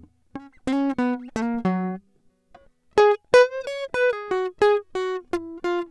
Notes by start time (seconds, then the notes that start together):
0.36 C#4
0.68 C#4
0.99 B3
1.37 A#3
1.66 F#3
2.98 G#4
3.35 B4 C5
3.68 C#5
3.95 B4
4.11 G#4
4.32 F#4
4.62 G#4
4.96 F#4
5.34 E4
5.65 F4